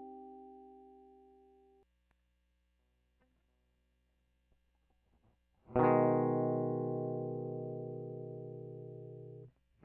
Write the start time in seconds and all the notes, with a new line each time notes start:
5.77 B2 D#3
5.84 G#3